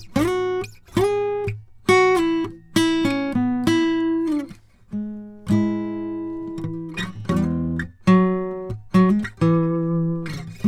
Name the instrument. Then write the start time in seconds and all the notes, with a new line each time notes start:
acoustic guitar
0.17 F#4
0.98 G#4
1.90 F#4
2.17 E4
2.77 E4
3.06 C#4
3.38 B3
3.68 E4
4.95 G#3
5.48 G#3
5.54 E4
6.66 E3
7.00 F#3
7.30 E2 F#3
8.09 F#3
8.96 F#3
9.11 G#3
9.43 E3